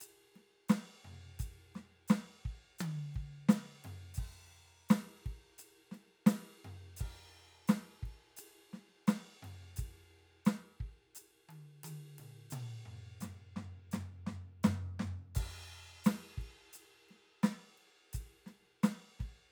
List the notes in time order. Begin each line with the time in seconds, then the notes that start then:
0.01 hi-hat pedal, ride
0.36 snare, ride
0.69 snare, hi-hat pedal, ride
1.05 floor tom, ride
1.40 kick, hi-hat pedal, ride
1.75 snare, ride
2.08 snare, hi-hat pedal, ride
2.46 kick
2.79 hi-hat pedal, high tom, ride
3.15 kick, ride
3.49 snare, hi-hat pedal, ride
3.85 floor tom, ride
4.15 kick, hi-hat pedal, crash
4.90 snare, hi-hat pedal, ride
5.26 kick, ride
5.59 hi-hat pedal, ride
5.92 snare, ride
6.27 snare, hi-hat pedal, ride
6.65 floor tom, ride
6.97 hi-hat pedal, crash
7.01 kick
7.68 snare, hi-hat pedal, ride
8.03 kick, ride
8.37 hi-hat pedal, ride
8.73 snare, ride
9.08 snare, hi-hat pedal, ride
9.43 floor tom, ride
9.77 kick, hi-hat pedal, ride
10.46 snare, hi-hat pedal, ride
10.81 kick
11.16 hi-hat pedal, ride
11.49 high tom, ride
11.84 hi-hat pedal, high tom, ride
12.19 mid tom, ride
12.51 hi-hat pedal, mid tom, ride
12.86 floor tom
13.21 snare, floor tom, hi-hat pedal
13.57 snare, floor tom
13.92 snare, floor tom, hi-hat pedal
14.27 snare, floor tom
14.64 snare, floor tom, hi-hat pedal
15.00 snare, floor tom
15.36 kick, hi-hat pedal, crash
16.05 snare, hi-hat pedal, ride
16.38 kick, ride
16.74 hi-hat pedal, ride
17.09 snare, ride
17.44 snare, hi-hat pedal, ride
17.78 ride
18.14 kick, hi-hat pedal, ride
18.47 snare, ride
18.84 snare, hi-hat pedal, ride
19.20 kick, snare, ride